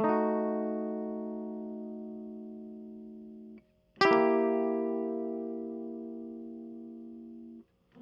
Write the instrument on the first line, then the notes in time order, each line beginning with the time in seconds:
electric guitar
0.01 A3 D#4
0.09 F#4
4.02 E4 G4
4.11 A#3